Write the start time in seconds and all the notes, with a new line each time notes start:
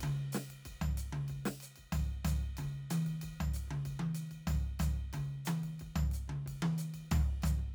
0.01 kick, mid tom, ride bell
0.33 snare, hi-hat pedal, ride bell
0.48 kick, ride
0.66 kick, ride bell
0.82 floor tom
0.98 hi-hat pedal, ride
1.13 kick, mid tom
1.29 kick, ride bell
1.46 snare
1.61 hi-hat pedal, ride bell
1.76 kick, ride bell
1.93 kick, floor tom, ride bell
2.25 floor tom, hi-hat pedal, ride bell
2.43 kick
2.58 kick, mid tom, ride bell
2.91 hi-hat pedal, high tom, ride bell
3.07 kick, ride
3.22 kick, ride bell
3.41 floor tom
3.54 hi-hat pedal, ride
3.68 kick, mid tom
3.86 kick, ride bell
4.00 high tom
4.15 hi-hat pedal, ride bell
4.31 kick, ride bell
4.48 kick, floor tom, ride bell
4.80 floor tom, hi-hat pedal, ride bell
4.97 kick
5.13 kick, mid tom, ride bell
5.46 hi-hat pedal, high tom, ride bell
5.62 kick, ride
5.80 kick, ride bell
5.96 floor tom
6.12 hi-hat pedal, ride
6.28 kick, mid tom
6.47 kick, ride
6.63 high tom
6.78 hi-hat pedal, ride bell
6.94 kick, ride bell
7.12 kick, floor tom, ride
7.43 floor tom, hi-hat pedal, ride bell
7.59 kick